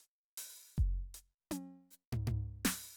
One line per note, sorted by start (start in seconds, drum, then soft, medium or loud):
0.00 closed hi-hat soft
0.37 open hi-hat medium
0.75 kick medium
0.75 closed hi-hat soft
0.75 hi-hat pedal soft
1.14 closed hi-hat medium
1.51 closed hi-hat medium
1.51 high tom medium
1.91 hi-hat pedal medium
2.12 floor tom medium
2.27 floor tom medium
2.65 open hi-hat loud
2.65 snare medium